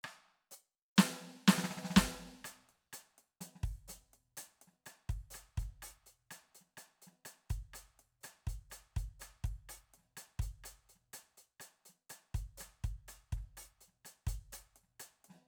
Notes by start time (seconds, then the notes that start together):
0.03 cross-stick, hi-hat pedal
0.51 hi-hat pedal
0.96 snare, hi-hat pedal
1.47 snare, hi-hat pedal
1.53 cross-stick
1.57 snare
1.64 snare
1.70 snare
1.77 snare
1.83 snare
1.84 snare
1.90 snare
1.96 kick, snare
2.44 closed hi-hat, cross-stick
2.69 closed hi-hat
2.93 closed hi-hat, cross-stick
3.18 closed hi-hat
3.41 closed hi-hat, snare
3.55 snare
3.63 kick, open hi-hat
3.88 closed hi-hat, snare, hi-hat pedal
4.13 closed hi-hat
4.37 closed hi-hat, cross-stick
4.61 closed hi-hat
4.67 snare
4.86 closed hi-hat, cross-stick
5.09 kick, snare, open hi-hat
5.30 closed hi-hat, cross-stick, hi-hat pedal
5.57 closed hi-hat, kick, snare
5.82 open hi-hat, cross-stick
6.06 closed hi-hat
6.30 closed hi-hat, cross-stick, snare
6.55 closed hi-hat
6.60 snare
6.77 closed hi-hat, cross-stick
7.02 closed hi-hat
7.06 snare
7.25 closed hi-hat, cross-stick
7.50 closed hi-hat, kick
7.73 closed hi-hat, cross-stick, snare, hi-hat pedal
7.99 closed hi-hat
8.21 closed hi-hat, cross-stick, hi-hat pedal
8.47 closed hi-hat, kick
8.70 closed hi-hat, cross-stick, hi-hat pedal
8.96 closed hi-hat, kick
9.01 snare
9.19 closed hi-hat, cross-stick, hi-hat pedal
9.44 kick, closed hi-hat
9.69 open hi-hat, cross-stick
9.94 snare, closed hi-hat
9.98 snare
10.16 closed hi-hat, cross-stick, snare
10.39 closed hi-hat, kick
10.64 closed hi-hat, cross-stick
10.89 closed hi-hat
10.95 snare
11.13 closed hi-hat, cross-stick
11.37 closed hi-hat
11.60 closed hi-hat, cross-stick
11.85 closed hi-hat, snare
12.09 closed hi-hat, cross-stick
12.34 closed hi-hat, kick, snare
12.57 closed hi-hat, cross-stick, snare, hi-hat pedal
12.84 closed hi-hat, kick
13.08 open hi-hat, cross-stick
13.32 kick, closed hi-hat
13.36 snare
13.57 open hi-hat, cross-stick
13.81 closed hi-hat
13.88 snare
14.04 closed hi-hat, cross-stick, snare
14.27 open hi-hat, kick
14.52 open hi-hat, cross-stick, hi-hat pedal
14.76 closed hi-hat
14.83 snare
14.99 closed hi-hat, cross-stick, snare
15.24 snare, closed hi-hat
15.30 snare